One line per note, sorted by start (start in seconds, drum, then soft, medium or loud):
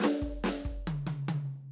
0.00 snare medium
0.03 snare loud
0.22 kick soft
0.44 snare loud
0.46 snare loud
0.65 kick medium
0.87 high tom loud
1.07 high tom loud
1.28 high tom loud